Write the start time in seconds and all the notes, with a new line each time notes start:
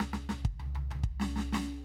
0.01 snare, floor tom, hi-hat pedal
0.13 snare, floor tom
0.29 snare, floor tom
0.45 kick
0.60 floor tom, high tom
0.75 floor tom, high tom
0.91 floor tom, high tom
1.03 kick
1.20 snare
1.36 snare
1.39 snare
1.52 snare
1.54 snare